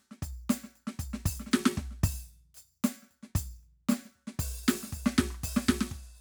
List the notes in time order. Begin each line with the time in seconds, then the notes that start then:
0.12 snare
0.23 kick, percussion
0.50 snare, percussion
0.65 snare
0.76 percussion
0.88 snare
1.00 kick, percussion
1.14 snare
1.26 kick, percussion
1.41 snare
1.47 snare
1.52 snare, percussion
1.54 snare
1.66 snare
1.78 kick, snare
1.92 snare
2.04 kick, percussion
2.55 percussion
2.58 percussion
2.85 snare, percussion
3.03 snare
3.11 kick, percussion
3.24 snare
3.36 kick, percussion
3.64 percussion
3.90 snare, percussion
3.92 snare
4.06 snare
4.16 kick
4.28 snare
4.40 kick, percussion
4.69 snare, percussion
4.84 snare
4.88 snare
4.93 kick, snare, percussion
5.07 snare
5.19 kick, snare
5.31 cross-stick
5.35 cross-stick
5.44 kick, percussion
5.57 snare
5.69 kick, snare
5.82 snare
5.92 kick